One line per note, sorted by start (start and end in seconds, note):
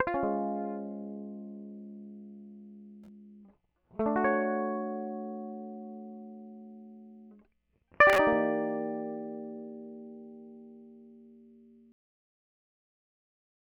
0.00 0.07 C5
0.07 3.48 F4
0.14 3.54 C#4
0.24 3.45 G#3
3.45 3.54 G3
4.00 7.45 A3
4.06 7.47 D4
4.16 7.40 F#4
4.24 7.30 C#5
8.00 10.96 D5
8.07 12.05 G4
8.19 11.63 D#4
8.28 12.11 A#3
8.34 10.47 E3